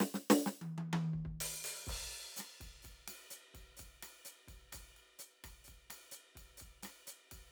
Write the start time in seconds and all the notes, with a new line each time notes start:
0.01 snare
0.15 snare
0.31 snare
0.35 cross-stick
0.47 snare
0.62 high tom
0.79 high tom
0.94 high tom
1.14 kick
1.26 kick
1.41 closed hi-hat
1.65 closed hi-hat
1.88 kick, crash
1.97 kick
2.37 cross-stick, snare, hi-hat pedal, ride
2.61 kick, ride
2.66 kick
2.83 kick, hi-hat pedal, ride
3.08 snare, ride
3.31 hi-hat pedal, ride
3.55 kick, ride
3.77 kick, hi-hat pedal, ride
4.03 cross-stick, ride
4.25 hi-hat pedal, ride
4.48 kick, ride
4.73 kick, cross-stick, snare, hi-hat pedal, ride
4.97 ride
5.19 hi-hat pedal, ride
5.44 kick, cross-stick, snare, ride
5.65 kick, hi-hat pedal, ride
5.90 cross-stick, snare, ride
6.12 hi-hat pedal, ride
6.36 kick, ride
6.58 hi-hat pedal, ride
6.62 kick
6.83 cross-stick, snare, closed hi-hat, ride
7.08 hi-hat pedal, ride
7.32 kick, ride